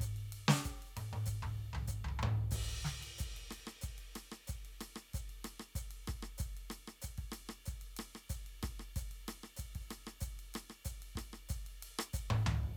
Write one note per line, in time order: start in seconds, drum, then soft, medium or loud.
0.01 kick medium
0.01 hi-hat pedal medium
0.01 ride soft
0.17 ride soft
0.33 ride medium
0.49 snare loud
0.65 kick medium
0.65 hi-hat pedal medium
0.65 ride soft
0.83 hi-hat pedal soft
0.83 ride soft
0.97 high tom medium
0.97 ride medium
1.14 high tom medium
1.26 kick medium
1.26 hi-hat pedal medium
1.26 ride medium
1.43 floor tom medium
1.43 high tom medium
1.74 floor tom medium
1.74 high tom medium
1.88 kick medium
1.88 hi-hat pedal medium
2.05 floor tom medium
2.09 high tom medium
2.20 floor tom medium
2.20 high tom loud
2.52 kick medium
2.52 hi-hat pedal medium
2.52 crash medium
2.52 ride medium
2.85 snare medium
2.85 ride soft
3.01 snare soft
3.01 ride soft
3.19 kick medium
3.19 hi-hat pedal medium
3.19 ride soft
3.37 ride soft
3.51 cross-stick medium
3.51 ride medium
3.68 cross-stick medium
3.82 kick medium
3.82 hi-hat pedal medium
3.82 ride soft
3.99 ride soft
4.16 cross-stick medium
4.16 ride medium
4.32 cross-stick medium
4.48 kick medium
4.48 hi-hat pedal medium
4.48 ride soft
4.66 ride soft
4.82 cross-stick medium
4.82 ride medium
4.97 cross-stick medium
5.14 kick medium
5.14 hi-hat pedal medium
5.14 ride soft
5.30 ride soft
5.45 cross-stick medium
5.45 ride medium
5.60 cross-stick medium
5.76 kick medium
5.76 hi-hat pedal medium
5.76 ride soft
5.92 ride soft
6.08 kick medium
6.08 cross-stick medium
6.08 ride soft
6.23 cross-stick medium
6.39 kick medium
6.39 hi-hat pedal medium
6.39 ride soft
6.58 ride soft
6.71 cross-stick medium
6.71 ride medium
6.88 cross-stick soft
7.03 kick soft
7.03 hi-hat pedal medium
7.03 ride soft
7.19 kick medium
7.19 ride soft
7.33 cross-stick medium
7.33 ride medium
7.50 cross-stick medium
7.66 kick medium
7.66 hi-hat pedal medium
7.66 ride soft
7.82 ride soft
7.97 cross-stick medium
7.97 ride medium
8.16 cross-stick soft
8.30 kick medium
8.30 hi-hat pedal medium
8.30 ride soft
8.47 ride soft
8.64 kick medium
8.64 cross-stick medium
8.64 ride medium
8.80 cross-stick soft
8.97 kick medium
8.97 hi-hat pedal medium
8.97 ride medium
9.12 ride soft
9.29 cross-stick medium
9.29 ride medium
9.44 cross-stick soft
9.57 kick medium
9.57 hi-hat pedal medium
9.57 ride soft
9.76 kick medium
9.76 ride soft
9.81 hi-hat pedal soft
9.91 cross-stick medium
9.91 ride medium
10.08 cross-stick medium
10.21 kick medium
10.21 hi-hat pedal medium
10.21 ride soft
10.40 ride soft
10.55 cross-stick medium
10.55 ride medium
10.71 cross-stick soft
10.86 kick medium
10.86 hi-hat pedal medium
10.86 ride medium
11.03 ride soft
11.16 kick medium
11.16 cross-stick medium
11.16 ride medium
11.34 cross-stick soft
11.50 kick medium
11.50 hi-hat pedal medium
11.50 ride medium
11.67 ride soft
11.83 ride medium
12.00 cross-stick medium
12.14 kick medium
12.14 hi-hat pedal medium
12.14 ride soft
12.31 high tom loud
12.47 floor tom loud
12.64 kick medium